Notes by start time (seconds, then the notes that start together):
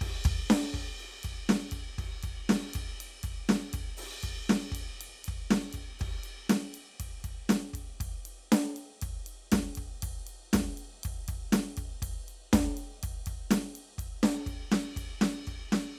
0.01 kick, ride
0.24 kick, ride
0.50 snare, ride
0.73 kick, ride
0.99 ride
1.23 kick, ride
1.49 snare, ride
1.71 kick, ride
1.98 kick, ride
2.23 kick, ride
2.49 snare, hi-hat pedal, ride
2.74 kick, ride
3.00 ride
3.23 kick, ride
3.48 snare, hi-hat pedal, ride
3.73 kick, ride
3.97 open hi-hat, ride
4.20 kick, hi-hat pedal, ride
4.49 snare, ride
4.72 kick, hi-hat pedal, ride
5.01 ride
5.09 kick
5.24 kick, ride
5.51 snare, ride
5.73 kick, ride
5.99 kick, ride
6.24 ride
6.49 snare, ride
6.74 ride
7.00 kick, ride
7.24 kick, ride
7.49 snare, ride
7.73 kick, ride
8.00 kick, ride
8.25 ride
8.52 snare, ride
8.76 ride
9.02 kick, ride
9.26 ride
9.52 kick, snare, ride
9.75 kick, ride
10.02 kick, ride
10.27 ride
10.53 kick, snare, ride
10.77 ride
11.03 kick, ride
11.28 kick, ride
11.52 snare, ride
11.77 kick, ride
12.02 kick, ride
12.28 ride
12.53 kick, snare, ride
12.77 ride
13.03 kick, ride
13.26 kick, ride
13.51 snare, ride
13.75 ride
13.98 kick, ride
14.23 snare, ride
14.46 kick, ride
14.71 snare, ride
14.96 kick, ride
15.21 snare, ride
15.47 kick, ride
15.72 snare, ride